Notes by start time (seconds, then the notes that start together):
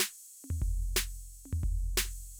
0.00 snare, crash
0.44 high tom
0.50 floor tom
0.62 kick
0.96 snare, crash
1.45 high tom
1.53 floor tom
1.63 kick
1.97 snare, crash
2.05 snare